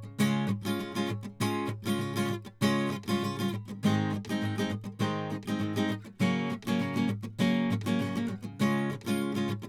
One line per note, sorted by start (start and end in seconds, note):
0.07 0.51 C#3
0.21 0.58 G#3
0.21 0.57 C#4
0.21 0.59 F4
0.68 0.98 C#3
0.68 0.81 G#3
0.68 0.82 C#4
0.68 0.82 F4
0.81 0.99 G#3
0.81 0.99 C#4
0.81 0.95 F4
0.98 1.14 C#3
0.98 1.19 G#3
0.98 1.19 C#4
0.98 1.19 F4
1.42 1.71 G#3
1.42 1.77 C#4
1.42 1.77 F4
1.88 2.00 C#3
1.88 2.00 G#3
1.88 2.01 C#4
1.88 2.02 F4
2.00 2.20 C#3
2.00 2.19 G#3
2.00 2.19 C#4
2.00 2.18 F4
2.18 2.38 C#3
2.18 2.40 G#3
2.18 2.42 C#4
2.18 2.43 F4
2.63 3.05 C#3
2.63 3.02 G#3
2.63 2.92 C#4
2.63 2.93 F4
3.10 3.24 C#3
3.10 3.24 C#4
3.10 3.21 F4
3.22 3.43 C#3
3.22 3.43 C#4
3.22 3.41 F4
3.42 3.62 C#3
3.42 3.52 C#4
3.42 3.59 F4
3.85 4.22 G#2
3.85 4.21 D#3
3.85 4.20 G#3
3.85 4.21 C4
3.85 4.22 D#4
4.32 4.42 D#3
4.32 4.44 G#3
4.32 4.45 C4
4.32 4.47 D#4
4.43 4.85 G#2
4.43 4.62 D#3
4.43 4.62 G#3
4.43 4.62 C4
4.43 4.61 D#4
4.61 4.79 D#3
4.61 4.79 G#3
4.61 4.80 C4
4.61 4.79 D#4
5.01 5.43 D#3
5.01 5.42 G#3
5.01 5.42 C4
5.01 5.42 D#4
5.50 5.61 D#3
5.50 5.62 G#3
5.50 5.62 C4
5.50 5.77 D#4
5.61 5.91 G#2
5.61 5.79 D#3
5.61 5.80 G#3
5.61 5.79 C4
5.79 6.03 D#3
5.79 6.02 G#3
5.79 6.01 C4
5.79 6.03 D#4
6.22 6.58 C#3
6.22 6.60 F#3
6.22 6.62 A#3
6.22 6.60 C#4
6.29 6.64 F#3
6.70 6.82 C#3
6.70 6.82 F#3
6.70 6.83 A#3
6.70 6.99 C#4
6.81 7.17 F#2
6.81 7.18 C#3
6.81 6.98 F#3
6.81 7.00 A#3
6.99 7.18 F#3
6.99 7.18 A#3
6.99 7.19 C#4
7.40 7.80 C#3
7.40 7.80 F#3
7.40 7.81 A#3
7.40 7.80 C#4
7.89 8.01 C#3
7.89 8.02 F#3
7.89 8.02 A#3
7.89 8.03 C#4
8.01 8.26 F#2
8.01 8.14 C#3
8.01 8.13 F#3
8.01 8.19 A#3
8.01 8.25 C#4
8.19 8.28 F#3
8.19 8.33 A#3
8.31 8.39 F#3
8.46 8.62 C#3
8.62 9.01 C#3
8.62 9.00 G#3
8.62 9.01 C#4
8.62 9.00 F4
9.09 9.39 C#3
9.09 9.39 G#3
9.09 9.39 C#4
9.09 9.35 F4
9.38 9.50 C#3
9.38 9.57 G#3
9.38 9.59 C#4
9.38 9.58 F4
9.50 9.58 C#3